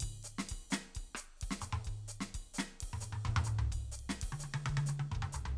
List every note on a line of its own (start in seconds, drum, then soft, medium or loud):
0.01 kick soft
0.01 ride bell medium
0.24 hi-hat pedal medium
0.24 ride soft
0.39 snare medium
0.49 kick soft
0.49 ride bell medium
0.71 snare medium
0.71 hi-hat pedal medium
0.96 kick soft
0.96 ride bell medium
1.15 cross-stick medium
1.15 hi-hat pedal loud
1.37 hi-hat pedal soft
1.42 kick soft
1.42 ride medium
1.51 kick soft
1.51 snare medium
1.62 hi-hat pedal medium
1.62 mid tom medium
1.73 mid tom medium
1.85 kick soft
1.85 ride bell soft
2.09 hi-hat pedal medium
2.21 snare medium
2.35 kick soft
2.35 ride bell medium
2.54 hi-hat pedal medium
2.59 snare medium
2.81 kick soft
2.81 ride medium
2.94 mid tom medium
3.01 hi-hat pedal medium
3.01 mid tom medium
3.13 mid tom medium
3.26 kick soft
3.26 mid tom loud
3.33 kick soft
3.33 mid tom loud
3.45 floor tom medium
3.45 hi-hat pedal medium
3.59 floor tom loud
3.72 kick soft
3.72 ride bell medium
3.79 kick soft
3.92 hi-hat pedal medium
4.00 ride soft
4.10 snare medium
4.22 kick soft
4.22 ride medium
4.32 kick soft
4.32 high tom medium
4.40 hi-hat pedal medium
4.44 high tom medium
4.54 high tom medium
4.66 kick soft
4.66 high tom loud
4.75 kick soft
4.75 high tom loud
4.87 hi-hat pedal medium
4.87 high tom medium
5.00 high tom medium
5.12 kick soft
5.12 mid tom loud
5.23 mid tom medium
5.33 floor tom medium
5.33 hi-hat pedal medium
5.46 floor tom loud